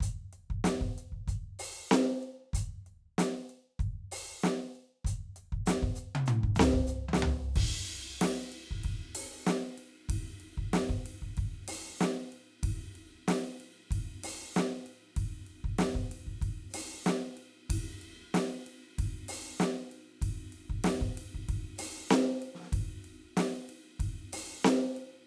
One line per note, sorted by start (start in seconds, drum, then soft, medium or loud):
0.01 closed hi-hat loud
0.01 kick medium
0.33 closed hi-hat soft
0.51 kick medium
0.65 closed hi-hat loud
0.65 snare loud
0.82 kick medium
0.99 closed hi-hat medium
1.13 kick soft
1.28 closed hi-hat medium
1.28 kick medium
1.60 open hi-hat loud
1.92 snare loud
1.92 hi-hat pedal medium
2.23 closed hi-hat soft
2.54 closed hi-hat loud
2.54 kick medium
2.87 closed hi-hat soft
3.19 closed hi-hat loud
3.19 snare loud
3.50 closed hi-hat soft
3.80 kick medium
3.80 closed hi-hat soft
4.12 open hi-hat loud
4.43 closed hi-hat medium
4.43 snare loud
4.43 hi-hat pedal medium
4.76 closed hi-hat soft
5.05 closed hi-hat loud
5.05 kick medium
5.37 closed hi-hat medium
5.53 kick medium
5.67 open hi-hat loud
5.67 snare loud
5.67 hi-hat pedal medium
5.83 kick medium
5.96 hi-hat pedal medium
6.16 high tom loud
6.27 hi-hat pedal medium
6.27 mid tom loud
6.44 kick medium
6.56 floor tom loud
6.56 hi-hat pedal medium
6.60 snare loud
6.74 kick medium
6.81 kick soft
6.88 hi-hat pedal medium
7.09 floor tom medium
7.14 snare loud
7.14 hi-hat pedal medium
7.23 floor tom loud
7.53 kick loud
7.53 hi-hat pedal soft
7.53 ride loud
7.84 ride soft
8.19 snare loud
8.19 hi-hat pedal soft
8.19 ride loud
8.53 ride medium
8.71 kick medium
8.84 kick medium
8.84 ride medium
9.16 open hi-hat loud
9.16 ride medium
9.47 snare loud
9.47 hi-hat pedal medium
9.47 ride medium
9.78 ride medium
10.09 kick medium
10.09 ride loud
10.41 ride soft
10.58 kick medium
10.74 snare loud
10.74 ride medium
10.90 kick medium
11.07 ride medium
11.23 kick soft
11.38 kick medium
11.38 ride medium
11.64 hi-hat pedal soft
11.68 open hi-hat loud
11.68 ride loud
12.01 snare loud
12.01 hi-hat pedal medium
12.01 ride medium
12.33 ride soft
12.64 kick medium
12.64 ride loud
12.96 ride soft
13.29 snare loud
13.29 ride loud
13.61 ride soft
13.91 kick medium
13.91 ride medium
14.24 open hi-hat loud
14.24 ride medium
14.56 snare loud
14.56 hi-hat pedal medium
14.56 ride soft
14.87 ride soft
15.17 kick medium
15.17 ride medium
15.47 ride soft
15.65 kick medium
15.79 snare loud
15.79 ride medium
15.96 kick medium
16.12 ride medium
16.27 kick soft
16.42 kick medium
16.42 ride medium
16.71 open hi-hat loud
16.71 hi-hat pedal soft
16.71 ride loud
17.07 snare loud
17.07 hi-hat pedal medium
17.07 ride medium
17.38 ride soft
17.70 kick medium
17.70 ride loud
18.02 ride soft
18.35 snare loud
18.35 ride medium
18.67 ride medium
18.99 kick medium
18.99 ride medium
19.29 open hi-hat loud
19.29 ride medium
19.61 snare loud
19.61 hi-hat pedal medium
19.61 ride medium
19.92 ride soft
20.22 kick medium
20.22 ride medium
20.53 ride soft
20.70 kick medium
20.85 snare loud
20.85 ride loud
21.02 kick medium
21.18 ride medium
21.35 kick soft
21.49 kick medium
21.49 ride medium
21.76 open hi-hat loud
21.76 hi-hat pedal soft
21.76 ride loud
22.11 snare loud
22.11 hi-hat pedal medium
22.11 ride soft
22.43 ride soft
22.55 snare soft
22.61 snare soft
22.64 snare soft
22.66 snare soft
22.73 kick medium
22.73 ride medium
23.05 ride soft
23.38 snare loud
23.38 ride medium
23.70 ride medium
24.00 kick medium
24.00 ride medium
24.33 open hi-hat loud
24.33 ride medium
24.65 snare loud
24.65 hi-hat pedal medium
24.65 ride medium
24.97 ride soft